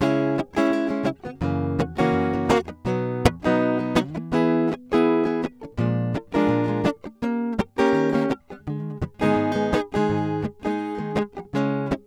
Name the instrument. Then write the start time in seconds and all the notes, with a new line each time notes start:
acoustic guitar
0.00 C#3 G#3 C#4 E4 G#4
0.58 G#3 C#4 E4 G#4
0.71 G#3 C#4 E4
0.88 G#3 C#4 E4 G#4
1.06 C#4 E4
1.25 B3 F4
1.42 F#2 C#3 E3 A#3
1.82 F#4
1.98 E3 A#3 C#4 F#4
2.02 C#3
2.13 C#3
2.23 F#2
2.31 A#3 C#4
2.36 C#3 E3
2.50 E3 A#3
2.86 B2 F#3 B3 D#4
3.47 B2 F#3 B3 D#4
3.79 F#3 B3 D#4
3.97 F#3 B3 D#4
4.18 B3
4.33 E3 B3 E4 G#4
4.94 E3 B3 E4 G#4
5.25 B3 E4 G#4
5.43 E3
5.78 A#2 F3 G#3 D4
6.33 G#3 D4 F4 A#4
6.38 F3
6.48 A#2 F3 G#3
6.65 D4 F4
6.70 F3 G#3
6.86 D4 A4
7.23 A#3 C#4
7.79 A#3 C#4 G4 A#4
7.94 D#3 A#3 C#4
8.10 G4 A#4
8.15 D#3 A#3 C#4
8.68 G#3
9.21 G#3 B3 D#4 G#4
9.25 G#2 D3
9.36 G#2
9.53 B3 D#4
9.57 D#3 G#3
9.73 G#3 B3 D#4 G#4
9.93 D#4 G#4
9.97 G#2 D#3 G#3
10.11 G#2 D#3
10.64 D#4 G#4
10.68 G#3
10.95 D#4
11.00 D#3 G#3
11.17 G#3
11.54 C#3 G#3 C#4